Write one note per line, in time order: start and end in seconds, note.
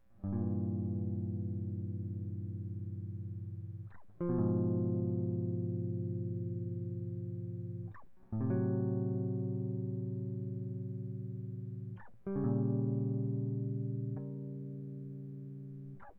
0.25 3.90 G2
0.34 3.90 A#2
4.21 7.94 F3
4.30 7.91 B2
4.40 7.94 G#2
8.34 12.03 A2
8.42 11.97 C3
8.51 12.02 F#3
12.27 16.03 G3
12.37 15.99 C#3
12.45 14.21 A#2